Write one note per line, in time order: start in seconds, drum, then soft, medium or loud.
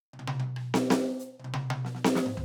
0.13 high tom medium
0.19 high tom medium
0.28 high tom loud
0.40 high tom loud
0.56 cross-stick medium
0.74 snare loud
0.90 snare loud
1.20 hi-hat pedal medium
1.40 high tom medium
1.44 high tom medium
1.54 high tom loud
1.70 high tom loud
1.85 snare medium
1.95 snare medium
2.05 snare loud
2.15 snare loud
2.26 mid tom medium
2.37 floor tom loud